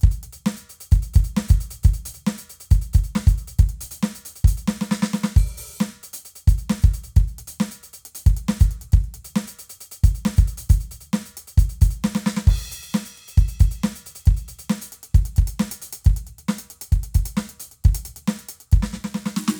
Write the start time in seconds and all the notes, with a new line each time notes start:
0.01 kick, closed hi-hat
0.11 closed hi-hat
0.23 closed hi-hat
0.33 closed hi-hat
0.46 snare
0.57 closed hi-hat
0.70 closed hi-hat
0.80 closed hi-hat
0.91 closed hi-hat, kick
1.02 closed hi-hat
1.14 closed hi-hat, kick
1.24 closed hi-hat
1.37 snare
1.49 closed hi-hat, kick
1.60 closed hi-hat
1.71 closed hi-hat
1.83 closed hi-hat, kick
1.94 closed hi-hat
2.05 closed hi-hat
2.14 closed hi-hat
2.27 snare
2.38 closed hi-hat
2.50 closed hi-hat
2.60 closed hi-hat
2.71 closed hi-hat, kick
2.82 closed hi-hat
2.93 closed hi-hat, kick
3.04 closed hi-hat
3.15 snare
3.27 closed hi-hat, kick
3.48 closed hi-hat
3.59 kick, closed hi-hat
3.69 closed hi-hat
3.81 closed hi-hat
3.91 closed hi-hat
4.03 snare
4.15 closed hi-hat
4.25 closed hi-hat
4.36 closed hi-hat
4.44 closed hi-hat, kick
4.57 closed hi-hat
4.68 snare
4.81 snare
4.91 snare
5.02 snare
5.14 snare
5.24 snare
5.36 open hi-hat, kick
5.45 open hi-hat
5.57 open hi-hat
5.68 open hi-hat
5.79 snare, hi-hat pedal
5.92 closed hi-hat
6.03 closed hi-hat
6.13 closed hi-hat
6.25 closed hi-hat
6.36 closed hi-hat
6.47 closed hi-hat, kick
6.58 closed hi-hat
6.70 snare
6.82 closed hi-hat, kick
6.94 closed hi-hat
7.16 kick, closed hi-hat
7.28 closed hi-hat
7.38 closed hi-hat
7.47 closed hi-hat
7.60 snare
7.71 closed hi-hat
7.83 closed hi-hat
7.93 closed hi-hat
8.05 closed hi-hat
8.15 closed hi-hat
8.26 kick, closed hi-hat
8.37 closed hi-hat
8.49 snare
8.60 closed hi-hat, kick
8.71 closed hi-hat
8.81 closed hi-hat
8.92 kick, closed hi-hat
9.04 closed hi-hat
9.14 closed hi-hat
9.25 closed hi-hat
9.36 snare
9.47 closed hi-hat
9.59 closed hi-hat
9.70 closed hi-hat
9.81 closed hi-hat
9.91 closed hi-hat
10.04 closed hi-hat, kick
10.15 closed hi-hat
10.25 snare
10.37 closed hi-hat, kick
10.47 closed hi-hat
10.69 closed hi-hat, kick
10.80 closed hi-hat
10.91 closed hi-hat
11.01 closed hi-hat
11.13 snare
11.26 closed hi-hat
11.37 closed hi-hat
11.47 closed hi-hat
11.58 closed hi-hat, kick
11.69 closed hi-hat
11.81 closed hi-hat, kick
11.91 closed hi-hat
12.03 snare, hi-hat pedal
12.15 snare
12.26 snare
12.37 snare
12.47 kick, crash
12.58 closed hi-hat
12.72 closed hi-hat
12.83 closed hi-hat
12.94 snare
13.06 closed hi-hat
13.18 closed hi-hat
13.28 closed hi-hat
13.38 kick, closed hi-hat
13.48 closed hi-hat
13.60 closed hi-hat, kick
13.71 closed hi-hat
13.84 snare
13.96 closed hi-hat
14.06 closed hi-hat
14.15 closed hi-hat
14.26 kick, closed hi-hat
14.37 closed hi-hat
14.48 closed hi-hat
14.59 closed hi-hat
14.70 snare
14.82 closed hi-hat
14.92 closed hi-hat
15.03 closed hi-hat
15.15 kick, closed hi-hat
15.36 kick, closed hi-hat
15.47 closed hi-hat
15.60 snare
15.71 closed hi-hat
15.82 closed hi-hat
15.93 closed hi-hat
16.05 kick, closed hi-hat
16.16 closed hi-hat
16.27 closed hi-hat
16.39 closed hi-hat
16.49 snare
16.59 closed hi-hat
16.70 closed hi-hat
16.81 closed hi-hat
16.92 kick, closed hi-hat
17.03 closed hi-hat
17.15 kick, closed hi-hat
17.26 closed hi-hat
17.37 snare
17.49 closed hi-hat
17.60 closed hi-hat
17.71 closed hi-hat
17.84 kick, closed hi-hat
17.95 closed hi-hat
18.05 closed hi-hat
18.16 closed hi-hat
18.28 snare
18.39 closed hi-hat
18.49 closed hi-hat
18.60 closed hi-hat
18.72 kick, closed hi-hat
18.83 snare
18.93 snare
19.04 snare
19.15 snare
19.26 snare
19.36 snare
19.48 snare